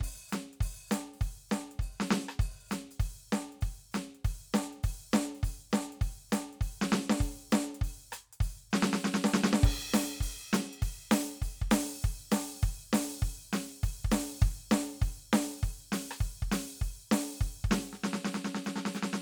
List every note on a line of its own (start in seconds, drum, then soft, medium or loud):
0.01 open hi-hat loud
0.01 kick medium
0.29 hi-hat pedal medium
0.33 snare medium
0.33 closed hi-hat medium
0.53 closed hi-hat soft
0.61 open hi-hat medium
0.61 kick medium
0.89 closed hi-hat medium
0.89 snare medium
0.89 hi-hat pedal soft
1.14 open hi-hat soft
1.21 open hi-hat medium
1.21 kick medium
1.49 closed hi-hat medium
1.49 snare medium
1.49 hi-hat pedal soft
1.72 closed hi-hat soft
1.80 open hi-hat medium
1.80 kick medium
2.00 snare loud
2.08 snare loud
2.08 hi-hat pedal soft
2.29 cross-stick medium
2.40 open hi-hat medium
2.40 kick medium
2.69 closed hi-hat medium
2.69 snare medium
2.69 hi-hat pedal soft
2.91 closed hi-hat soft
3.00 open hi-hat medium
3.00 kick medium
3.30 closed hi-hat medium
3.30 snare medium
3.30 hi-hat pedal soft
3.53 closed hi-hat soft
3.61 open hi-hat medium
3.61 kick medium
3.92 closed hi-hat medium
3.92 snare medium
3.92 hi-hat pedal soft
4.15 closed hi-hat soft
4.25 open hi-hat medium
4.25 kick medium
4.53 closed hi-hat medium
4.53 snare loud
4.53 hi-hat pedal soft
4.73 closed hi-hat soft
4.84 open hi-hat medium
4.84 kick medium
5.11 closed hi-hat medium
5.11 snare loud
5.11 hi-hat pedal soft
5.35 open hi-hat soft
5.43 open hi-hat medium
5.43 kick medium
5.71 closed hi-hat medium
5.71 snare loud
5.71 hi-hat pedal soft
5.93 closed hi-hat soft
6.01 open hi-hat medium
6.01 kick medium
6.29 closed hi-hat medium
6.29 snare loud
6.29 hi-hat pedal soft
6.53 closed hi-hat soft
6.61 open hi-hat medium
6.61 kick medium
6.82 snare loud
6.90 snare loud
6.90 hi-hat pedal soft
7.10 snare loud
7.21 open hi-hat medium
7.21 kick medium
7.50 snare loud
7.50 closed hi-hat medium
7.50 hi-hat pedal soft
7.75 closed hi-hat medium
7.82 open hi-hat medium
7.82 kick medium
8.11 closed hi-hat medium
8.11 cross-stick medium
8.11 hi-hat pedal soft
8.33 closed hi-hat medium
8.41 open hi-hat medium
8.41 kick medium
8.71 snare loud
8.71 hi-hat pedal soft
8.83 snare loud
8.93 snare loud
8.99 hi-hat pedal medium
9.05 snare loud
9.14 snare loud
9.25 snare loud
9.25 hi-hat pedal medium
9.34 snare loud
9.53 snare loud
9.64 kick loud
9.64 crash loud
9.94 open hi-hat loud
9.94 snare loud
10.01 snare soft
10.21 open hi-hat medium
10.21 kick medium
10.50 snare loud
10.50 hi-hat pedal soft
10.54 closed hi-hat loud
10.73 closed hi-hat medium
10.82 open hi-hat medium
10.82 kick medium
11.12 open hi-hat loud
11.12 snare loud
11.34 open hi-hat soft
11.42 open hi-hat medium
11.42 kick medium
11.62 kick medium
11.71 open hi-hat loud
11.71 snare loud
11.92 open hi-hat medium
12.02 open hi-hat medium
12.02 kick medium
12.32 open hi-hat loud
12.32 snare loud
12.52 open hi-hat soft
12.62 open hi-hat medium
12.62 kick loud
12.93 open hi-hat loud
12.93 snare loud
13.14 open hi-hat soft
13.22 open hi-hat medium
13.22 kick medium
13.53 open hi-hat medium
13.53 snare loud
13.73 open hi-hat soft
13.83 open hi-hat medium
13.83 kick medium
14.05 kick medium
14.12 open hi-hat loud
14.12 snare loud
14.31 open hi-hat medium
14.41 open hi-hat medium
14.41 kick loud
14.71 open hi-hat medium
14.71 snare loud
14.92 open hi-hat soft
15.02 open hi-hat medium
15.02 kick medium
15.33 open hi-hat loud
15.33 snare loud
15.54 open hi-hat soft
15.63 open hi-hat medium
15.63 kick medium
15.92 open hi-hat medium
15.92 snare loud
16.11 open hi-hat soft
16.11 cross-stick medium
16.21 open hi-hat medium
16.21 kick medium
16.43 kick medium
16.52 open hi-hat loud
16.52 snare loud
16.75 open hi-hat soft
16.82 open hi-hat medium
16.82 kick medium
17.12 open hi-hat loud
17.12 snare loud
17.33 open hi-hat medium
17.41 open hi-hat medium
17.41 kick medium
17.65 kick medium
17.71 open hi-hat medium
17.71 snare loud
17.93 snare soft
18.04 snare loud
18.04 hi-hat pedal soft
18.14 snare medium
18.25 snare medium
18.33 snare medium
18.33 hi-hat pedal soft
18.45 snare medium
18.55 snare medium
18.64 snare medium
18.64 hi-hat pedal soft
18.76 snare medium
18.86 snare medium
18.94 snare medium
18.94 hi-hat pedal medium
19.03 snare medium
19.13 snare medium